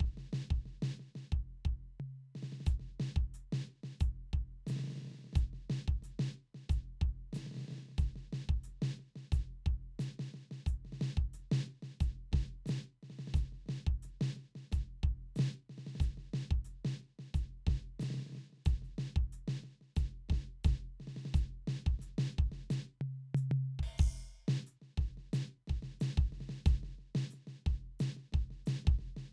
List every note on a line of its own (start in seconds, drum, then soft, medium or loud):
0.01 kick medium
0.05 snare soft
0.18 snare soft
0.34 snare medium
0.51 kick medium
0.51 snare soft
0.66 snare soft
0.83 snare medium
1.00 snare soft
1.16 snare soft
1.33 kick soft
1.66 kick soft
2.01 floor tom medium
2.36 snare soft
2.43 snare soft
2.53 snare soft
2.61 snare soft
2.67 kick medium
2.67 hi-hat pedal medium
2.80 snare soft
3.01 snare medium
3.17 kick medium
3.35 hi-hat pedal medium
3.53 snare medium
3.69 snare soft
3.84 snare soft
4.01 kick medium
4.01 hi-hat pedal medium
4.34 kick soft
4.68 snare soft
4.68 hi-hat pedal medium
4.71 snare soft
4.77 snare soft
4.80 snare soft
4.85 snare soft
4.88 snare soft
4.88 hi-hat pedal soft
4.91 snare soft
4.93 snare soft
4.97 snare soft
4.98 snare soft
5.02 snare soft
5.06 snare soft
5.08 snare soft
5.11 snare soft
5.15 snare soft
5.20 snare soft
5.22 snare soft
5.28 snare soft
5.34 kick medium
5.34 snare soft
5.34 hi-hat pedal medium
5.54 snare soft
5.71 snare medium
5.88 kick medium
5.88 snare soft
6.03 snare soft
6.03 hi-hat pedal medium
6.20 snare medium
6.39 snare soft
6.55 snare soft
6.70 kick medium
6.70 snare soft
6.70 hi-hat pedal medium
7.02 kick medium
7.34 snare soft
7.34 hi-hat pedal medium
7.37 snare soft
7.52 snare soft
7.55 snare soft
7.58 snare soft
7.60 snare soft
7.62 snare soft
7.65 snare soft
7.69 snare soft
7.71 snare soft
7.73 snare soft
7.75 snare soft
7.79 snare soft
7.83 snare soft
7.87 snare soft
7.89 snare soft
7.92 snare soft
7.99 kick medium
7.99 snare soft
7.99 hi-hat pedal medium
8.17 snare soft
8.33 snare medium
8.50 kick medium
8.55 snare soft
8.64 hi-hat pedal medium
8.69 snare soft
8.83 snare medium
9.00 snare soft
9.17 snare soft
9.33 kick medium
9.33 snare soft
9.33 hi-hat pedal medium
9.67 kick medium
10.00 snare medium
10.00 hi-hat pedal medium
10.20 snare soft
10.35 snare soft
10.52 snare soft
10.67 kick soft
10.67 hi-hat pedal medium
10.86 snare soft
10.93 snare soft
11.02 snare medium
11.18 kick medium
11.34 snare soft
11.34 hi-hat pedal medium
11.52 snare medium
11.69 snare soft
11.83 snare soft
12.01 kick medium
12.01 snare soft
12.01 hi-hat pedal medium
12.33 kick medium
12.33 snare soft
12.35 snare medium
12.67 snare soft
12.67 hi-hat pedal medium
12.70 snare medium
13.04 snare soft
13.11 snare soft
13.20 snare soft
13.28 snare soft
13.35 kick medium
13.35 snare soft
13.35 hi-hat pedal medium
13.53 snare soft
13.67 snare soft
13.70 snare medium
13.87 kick medium
14.03 snare soft
14.03 hi-hat pedal medium
14.22 snare medium
14.37 snare soft
14.56 snare soft
14.73 kick soft
14.73 snare soft
14.73 hi-hat pedal medium
15.04 kick medium
15.37 snare soft
15.37 hi-hat pedal medium
15.40 snare medium
15.70 snare soft
15.79 snare soft
15.87 snare soft
15.96 snare soft
16.01 kick medium
16.01 snare soft
16.01 hi-hat pedal medium
16.18 snare soft
16.34 snare medium
16.52 kick medium
16.65 snare soft
16.65 hi-hat pedal medium
16.86 snare medium
17.02 snare soft
17.20 snare soft
17.35 kick soft
17.35 snare soft
17.35 hi-hat pedal medium
17.68 kick medium
17.68 snare soft
18.00 snare medium
18.00 hi-hat pedal medium
18.04 snare medium
18.11 snare soft
18.15 snare soft
18.18 snare soft
18.20 snare soft
18.23 snare soft
18.27 snare soft
18.30 snare soft
18.33 snare soft
18.36 snare soft
18.38 snare soft
18.42 snare soft
18.51 snare soft
18.53 snare soft
18.58 snare soft
18.66 kick medium
18.66 snare soft
18.66 hi-hat pedal medium
18.83 snare soft
18.83 hi-hat pedal soft
18.99 snare medium
19.17 kick medium
19.33 hi-hat pedal medium
19.49 snare medium
19.64 snare soft
19.82 snare soft
19.97 kick medium
19.97 snare soft
19.97 hi-hat pedal medium
20.30 kick medium
20.30 snare soft
20.33 snare soft
20.65 kick medium
20.65 snare soft
20.65 hi-hat pedal medium
21.01 snare soft
21.08 snare soft
21.17 snare soft
21.26 snare soft
21.35 kick medium
21.35 snare soft
21.35 hi-hat pedal medium
21.68 snare medium
21.87 kick medium
21.87 snare soft
22.00 snare soft
22.00 hi-hat pedal medium
22.19 snare medium
22.38 kick medium
22.38 snare soft
22.53 snare soft
22.71 snare medium
22.71 hi-hat pedal medium
23.02 floor tom medium
23.35 floor tom loud
23.35 hi-hat pedal medium
23.52 floor tom loud
23.80 kick soft
23.80 ride soft
23.99 kick medium
23.99 hi-hat pedal medium
23.99 crash soft
24.49 snare medium
24.67 snare soft
24.67 hi-hat pedal medium
24.83 snare soft
24.98 kick soft
24.98 snare soft
25.18 snare soft
25.34 snare medium
25.34 hi-hat pedal medium
25.68 kick soft
25.68 snare soft
25.83 snare soft
26.01 snare medium
26.01 hi-hat pedal medium
26.18 kick medium
26.18 snare soft
26.33 snare soft
26.41 snare soft
26.50 snare soft
26.66 kick medium
26.66 snare soft
26.66 hi-hat pedal medium
26.84 snare soft
26.99 snare soft
27.16 snare medium
27.31 snare soft
27.31 hi-hat pedal medium
27.48 snare soft
27.67 kick medium
27.67 snare soft
27.84 snare soft
28.00 snare medium
28.00 hi-hat pedal medium
28.18 snare soft
28.33 kick medium
28.33 snare soft
28.51 snare soft
28.67 snare medium
28.67 hi-hat pedal medium
28.86 kick medium
28.86 snare soft
29.00 snare soft
29.17 snare soft